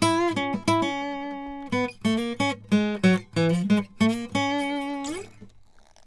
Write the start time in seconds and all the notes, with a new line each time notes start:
0.03 E4
0.38 C#4
0.69 E4
0.83 C#4
1.74 B3
2.06 A3
2.19 A#3
2.41 C#4
2.73 G#3
3.04 F#3
3.37 E3
3.51 F3
3.71 G#3
4.02 A3
4.36 C#4